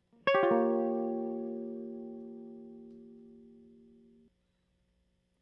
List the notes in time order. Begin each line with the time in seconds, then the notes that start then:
0.13 A#3
0.27 C#5
0.35 G4
0.43 F4
0.51 A#3